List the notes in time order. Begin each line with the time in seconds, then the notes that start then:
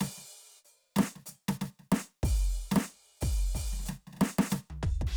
0.00 open hi-hat, snare
0.17 snare
0.65 hi-hat pedal
0.96 snare
0.99 snare
1.15 snare
1.26 snare, hi-hat pedal
1.48 snare
1.61 snare
1.79 snare
1.92 snare
2.23 open hi-hat, kick
2.71 snare
2.76 snare
3.21 open hi-hat, kick
3.55 open hi-hat, kick
3.72 snare
3.79 snare
3.83 snare, hi-hat pedal
3.88 snare
4.07 snare
4.13 snare
4.16 snare
4.20 snare
4.38 snare
4.49 snare, hi-hat pedal
4.70 floor tom
4.83 kick
5.01 kick
5.07 ride